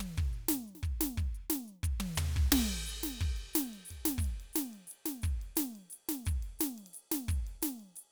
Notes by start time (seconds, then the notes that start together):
0.01 closed hi-hat, high tom
0.18 kick, closed hi-hat
0.34 closed hi-hat
0.49 closed hi-hat, snare
0.68 closed hi-hat
0.76 snare
0.84 kick, closed hi-hat
1.01 snare, closed hi-hat
1.18 kick, closed hi-hat
1.35 closed hi-hat
1.51 closed hi-hat, snare
1.68 closed hi-hat
1.84 kick, closed hi-hat
2.01 high tom
2.16 floor tom, hi-hat pedal
2.37 kick
2.53 snare, crash
2.87 hi-hat pedal, ride
3.04 snare, ride
3.21 kick, ride
3.37 ride
3.54 snare, hi-hat pedal, ride
3.74 ride
3.86 hi-hat pedal
3.91 kick, ride
4.06 snare, ride
4.19 kick, hi-hat pedal
4.25 ride
4.41 ride
4.54 snare, hi-hat pedal, ride
4.74 ride
4.88 hi-hat pedal
4.92 ride
5.06 snare, ride
5.23 kick, hi-hat pedal, ride
5.42 ride
5.56 snare, hi-hat pedal, ride
5.76 ride
5.91 hi-hat pedal, ride
6.09 snare, ride
6.26 kick, hi-hat pedal, ride
6.43 ride
6.60 snare, hi-hat pedal, ride
6.78 ride
6.87 ride
6.94 hi-hat pedal, ride
7.12 snare, ride
7.29 kick, hi-hat pedal, ride
7.47 ride
7.63 snare, hi-hat pedal, ride
7.80 ride
7.96 hi-hat pedal, ride